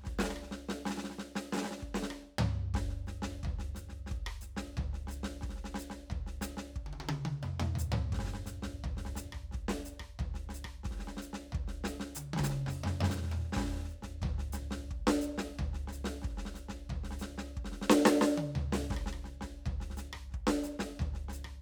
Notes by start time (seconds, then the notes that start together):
0.01 snare
0.04 kick, snare
0.20 snare
0.24 snare
0.30 cross-stick, snare
0.37 cross-stick
0.40 cross-stick, snare
0.47 snare
0.52 snare
0.62 snare
0.69 snare
0.86 snare
0.90 snare
0.95 snare
0.98 snare
1.04 snare
1.11 snare
1.19 snare
1.36 snare
1.53 snare
1.57 snare
1.62 snare
1.65 snare
1.72 snare
1.79 snare
1.83 kick
1.95 snare
2.03 snare
2.11 cross-stick
2.18 cross-stick
2.22 snare
2.39 floor tom
2.75 kick, snare
2.90 snare
3.07 snare, hi-hat pedal
3.23 kick, snare
3.32 snare
3.44 kick, floor tom
3.59 snare
3.75 snare, hi-hat pedal
3.89 kick, snare
4.07 snare
4.12 kick
4.27 cross-stick
4.42 snare, hi-hat pedal
4.57 kick, snare
4.78 kick, floor tom
4.94 snare
5.08 snare, hi-hat pedal
5.24 kick, snare
5.42 kick, snare
5.50 snare
5.56 snare
5.65 snare
5.75 snare
5.80 hi-hat pedal
5.91 kick, snare
6.11 kick, floor tom
6.27 snare
6.42 snare, hi-hat pedal
6.58 snare
6.76 kick, high tom
6.87 high tom
6.94 high tom
7.01 high tom
7.10 high tom
7.26 high tom
7.43 hi-hat pedal, mid tom
7.60 mid tom
7.76 floor tom, hi-hat pedal
7.93 floor tom
8.13 kick, snare
8.20 snare
8.24 snare
8.27 snare
8.46 snare, hi-hat pedal
8.63 kick, snare
8.85 kick, floor tom
8.98 snare
9.06 snare
9.16 snare, hi-hat pedal
9.33 kick, cross-stick
9.52 kick, snare
9.69 snare
9.85 snare, hi-hat pedal
10.00 kick, cross-stick
10.20 kick, floor tom
10.35 snare
10.50 snare
10.55 hi-hat pedal
10.65 kick, cross-stick
10.84 kick, snare
10.92 snare
10.97 snare
11.00 snare
11.08 snare
11.18 snare
11.23 hi-hat pedal
11.34 kick, snare
11.53 kick, floor tom
11.68 snare
11.85 snare, hi-hat pedal
12.00 snare
12.16 hi-hat pedal, high tom
12.34 snare, high tom
12.40 kick, high tom
12.44 snare, hi-hat pedal, high tom
12.50 snare, high tom
12.67 snare, hi-hat pedal, mid tom
12.84 snare, mid tom
13.01 snare, mid tom
13.06 mid tom
13.11 snare, hi-hat pedal, mid tom
13.17 snare
13.23 snare
13.28 snare
13.31 snare, mid tom
13.35 snare
13.40 snare
13.45 snare
13.49 snare
13.53 kick, snare
13.57 snare
13.61 snare
13.65 snare
13.72 snare
13.76 snare
13.79 snare
13.84 snare
13.90 snare, hi-hat pedal
14.03 kick, snare
14.22 kick, floor tom
14.39 snare
14.53 snare, hi-hat pedal
14.71 kick, snare
14.90 kick, snare
15.08 snare
15.22 snare, hi-hat pedal
15.38 kick, snare
15.59 kick, floor tom
15.74 snare
15.88 snare
15.93 hi-hat pedal
16.05 snare
16.22 kick, snare
16.30 snare
16.35 snare
16.38 snare
16.46 snare
16.55 snare, hi-hat pedal
16.69 kick, snare
16.90 kick, floor tom
17.04 snare
17.12 snare
17.20 snare, hi-hat pedal
17.38 snare
17.57 kick
17.65 snare
17.72 snare
17.82 snare
17.90 snare
18.06 snare
18.22 snare
18.38 high tom
18.56 floor tom
18.73 snare
18.91 kick, snare
18.97 cross-stick
19.02 kick, cross-stick
19.07 snare
19.13 cross-stick
19.25 snare
19.42 kick, snare
19.66 kick, floor tom
19.81 snare
19.91 snare
19.98 snare, hi-hat pedal
20.14 kick, cross-stick
20.30 snare
20.35 kick
20.48 snare
20.64 snare, hi-hat pedal
20.80 kick, snare
21.00 kick, floor tom
21.14 snare
21.29 snare
21.34 hi-hat pedal
21.45 kick, cross-stick